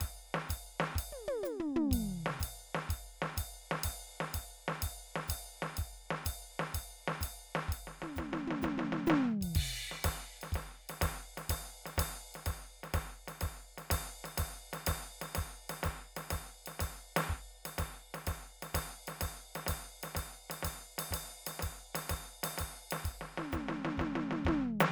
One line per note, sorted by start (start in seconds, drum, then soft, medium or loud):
0.01 kick soft
0.01 ride medium
0.34 snare medium
0.49 kick soft
0.49 hi-hat pedal loud
0.49 ride medium
0.80 snare medium
0.96 kick soft
0.96 ride loud
1.12 high tom medium
1.28 closed hi-hat soft
1.28 high tom loud
1.43 hi-hat pedal loud
1.43 high tom medium
1.59 floor tom medium
1.68 kick soft
1.76 floor tom loud
1.92 kick medium
1.92 ride loud
2.06 kick soft
2.26 snare medium
2.40 kick soft
2.40 hi-hat pedal loud
2.40 ride loud
2.75 snare medium
2.90 kick soft
2.90 ride medium
3.22 snare medium
3.37 kick soft
3.37 hi-hat pedal medium
3.37 ride loud
3.71 snare medium
3.84 kick soft
3.84 ride loud
4.21 snare medium
4.34 kick soft
4.34 hi-hat pedal medium
4.34 ride medium
4.68 snare medium
4.82 kick soft
4.82 ride loud
5.16 snare medium
5.28 kick soft
5.28 hi-hat pedal loud
5.28 ride loud
5.62 snare medium
5.77 kick soft
5.77 ride medium
6.11 snare medium
6.25 kick soft
6.25 hi-hat pedal loud
6.25 ride loud
6.59 snare medium
6.74 kick soft
6.74 ride loud
7.08 snare medium
7.21 kick soft
7.21 hi-hat pedal loud
7.21 ride loud
7.55 snare medium
7.69 kick soft
7.69 ride medium
7.87 snare soft
8.02 snare soft
8.02 floor tom medium
8.16 kick soft
8.16 snare soft
8.16 floor tom medium
8.16 hi-hat pedal medium
8.32 snare medium
8.32 floor tom medium
8.37 hi-hat pedal soft
8.47 floor tom medium
8.51 snare medium
8.62 kick soft
8.62 snare medium
8.62 floor tom medium
8.62 hi-hat pedal loud
8.77 snare medium
8.77 floor tom medium
8.92 snare medium
8.92 floor tom medium
9.07 snare loud
9.07 floor tom loud
9.07 hi-hat pedal loud
9.29 hi-hat pedal soft
9.41 kick soft
9.41 ride medium
9.55 kick medium
9.55 crash loud
9.55 ride medium
9.92 snare soft
10.04 kick soft
10.04 snare medium
10.04 ride loud
10.42 snare soft
10.42 ride medium
10.52 kick soft
10.52 snare soft
10.52 ride medium
10.89 snare soft
10.89 ride medium
11.02 kick medium
11.02 snare medium
11.02 ride loud
11.38 snare soft
11.38 ride medium
11.50 kick soft
11.50 snare soft
11.50 ride loud
11.86 snare soft
11.86 ride medium
11.97 kick soft
11.97 snare medium
11.97 hi-hat pedal medium
11.97 ride loud
12.34 snare soft
12.34 ride soft
12.46 kick soft
12.46 snare soft
12.46 ride medium
12.84 snare soft
12.84 ride soft
12.94 kick soft
12.94 snare medium
12.94 hi-hat pedal medium
12.94 ride medium
13.28 snare soft
13.28 ride medium
13.41 kick soft
13.41 snare soft
13.41 ride medium
13.78 snare soft
13.78 ride soft
13.91 kick soft
13.91 snare medium
13.91 hi-hat pedal medium
13.91 ride loud
14.24 snare soft
14.24 ride medium
14.38 kick soft
14.38 snare medium
14.38 ride loud
14.73 snare medium
14.73 ride medium
14.87 kick soft
14.87 snare medium
14.87 hi-hat pedal loud
14.87 ride loud
15.22 snare soft
15.22 ride medium
15.35 kick soft
15.35 snare medium
15.35 ride medium
15.70 snare soft
15.70 ride medium
15.83 kick soft
15.83 snare medium
15.83 hi-hat pedal loud
15.83 ride medium
16.17 snare soft
16.17 ride medium
16.31 kick soft
16.31 snare medium
16.31 ride medium
16.66 snare soft
16.66 ride medium
16.80 kick soft
16.80 snare medium
16.80 hi-hat pedal loud
16.80 ride medium
17.17 snare loud
17.17 ride medium
17.29 kick soft
17.29 hi-hat pedal soft
17.66 snare soft
17.66 ride medium
17.78 kick soft
17.78 snare medium
17.78 hi-hat pedal loud
17.78 ride medium
18.14 snare soft
18.14 ride medium
18.26 kick soft
18.26 snare medium
18.26 hi-hat pedal soft
18.26 ride medium
18.63 snare soft
18.63 ride medium
18.74 kick soft
18.74 snare medium
18.74 hi-hat pedal loud
18.74 ride loud
19.07 snare soft
19.07 ride medium
19.21 kick soft
19.21 snare medium
19.21 ride loud
19.55 snare soft
19.55 ride medium
19.67 kick soft
19.67 snare medium
19.67 hi-hat pedal loud
19.67 ride loud
20.03 snare soft
20.03 ride medium
20.15 kick soft
20.15 snare medium
20.15 ride medium
20.50 snare soft
20.50 ride medium
20.63 kick soft
20.63 snare medium
20.63 hi-hat pedal loud
20.63 ride loud
20.98 snare soft
20.98 ride loud
21.11 kick soft
21.11 snare soft
21.11 ride loud
21.47 snare soft
21.47 ride loud
21.60 kick soft
21.60 snare medium
21.60 hi-hat pedal medium
21.60 ride medium
21.95 snare medium
21.95 ride loud
22.10 kick soft
22.10 snare medium
22.10 ride medium
22.43 snare medium
22.43 ride loud
22.58 kick soft
22.58 snare medium
22.58 hi-hat pedal loud
22.58 ride medium
22.91 snare medium
22.91 ride medium
23.05 kick soft
23.05 ride medium
23.21 snare soft
23.38 snare medium
23.38 floor tom medium
23.52 kick soft
23.52 snare medium
23.52 floor tom medium
23.52 hi-hat pedal loud
23.69 snare medium
23.69 floor tom medium
23.84 snare medium
23.84 floor tom medium
23.98 kick soft
23.98 snare medium
23.98 floor tom medium
23.98 hi-hat pedal soft
24.15 snare medium
24.15 floor tom medium
24.31 snare medium
24.31 floor tom medium
24.45 kick soft
24.45 snare medium
24.45 floor tom loud
24.80 open hi-hat loud
24.80 snare loud